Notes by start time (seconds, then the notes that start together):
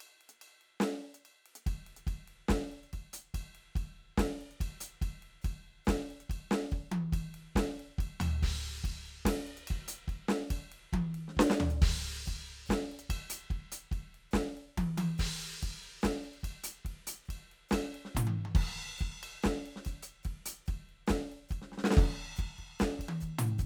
0.01 ride bell
0.21 ride
0.29 closed hi-hat
0.42 ride bell
0.62 ride
0.81 snare, ride bell
1.15 closed hi-hat
1.26 ride bell
1.46 ride
1.56 closed hi-hat
1.67 kick, ride bell
1.87 ride
1.97 closed hi-hat
2.07 kick, ride bell
2.28 ride
2.49 kick, snare, ride bell
2.72 ride
2.84 closed hi-hat
2.93 kick, ride bell
3.14 closed hi-hat
3.34 kick, ride bell
3.55 ride
3.76 kick, ride bell
4.18 kick, snare, ride
4.41 ride
4.51 closed hi-hat
4.61 kick, ride bell
4.81 closed hi-hat
5.02 kick, ride bell
5.23 ride
5.42 kick, hi-hat pedal, ride bell
5.67 ride
5.85 kick, snare, hi-hat pedal
5.89 ride bell
6.11 ride
6.21 closed hi-hat
6.30 kick, ride bell
6.51 snare
6.72 kick, ride bell
6.92 high tom
7.13 kick, ride bell
7.35 ride
7.56 kick, snare, ride bell
7.80 ride
7.99 kick, ride bell
8.21 floor tom, ride bell
8.43 kick, crash
8.84 kick, ride bell
9.06 ride
9.26 kick, snare, ride
9.47 ride
9.57 closed hi-hat
9.68 kick, ride bell
9.88 closed hi-hat
10.08 kick, ride bell
10.29 snare
10.51 kick, ride bell
10.72 ride
10.93 kick, high tom
11.15 ride
11.28 snare
11.37 kick, snare
11.50 snare
11.60 floor tom
11.71 closed hi-hat
11.82 kick, crash
12.25 kick, hi-hat pedal, ride bell
12.49 ride
12.66 kick, hi-hat pedal
12.71 snare, ride bell
12.92 ride
12.99 closed hi-hat
13.10 kick, ride bell
13.30 closed hi-hat
13.51 kick, ride
13.72 closed hi-hat
13.92 kick, ride bell
14.15 ride
14.31 kick, snare, hi-hat pedal
14.36 ride bell
14.57 ride
14.78 kick, high tom, ride
14.98 high tom, ride bell
15.18 kick, hi-hat pedal, crash
15.41 ride
15.61 kick, hi-hat pedal, ride
15.84 ride
16.02 kick, snare, hi-hat pedal, ride bell
16.24 ride bell
16.34 open hi-hat
16.40 kick, hi-hat pedal
16.45 ride bell
16.64 closed hi-hat
16.85 kick, ride
17.07 open hi-hat
17.26 kick, hi-hat pedal
17.31 ride bell
17.52 ride
17.69 kick, snare, hi-hat pedal
17.73 ride bell
17.95 ride
18.05 snare
18.15 kick, hi-hat pedal, mid tom
18.27 high tom
18.46 high tom
18.55 kick, crash
18.98 kick, hi-hat pedal
19.23 ride bell
19.43 kick, snare, hi-hat pedal
19.66 ride
19.76 snare
19.85 kick, hi-hat pedal, ride bell
20.03 closed hi-hat
20.23 kick, hi-hat pedal, ride
20.46 closed hi-hat
20.66 kick, hi-hat pedal, ride bell
20.89 ride
21.07 kick, snare, hi-hat pedal, ride bell
21.32 ride
21.49 kick, hi-hat pedal, ride bell
21.62 snare
21.72 snare
21.78 snare
21.84 snare
21.91 snare
21.97 kick, crash
22.36 kick, hi-hat pedal
22.59 kick, snare, floor tom, mid tom, ride
22.80 kick, snare, hi-hat pedal
22.99 kick, ride bell
23.09 high tom
23.21 kick, hi-hat pedal
23.39 mid tom, ride bell
23.59 kick, hi-hat pedal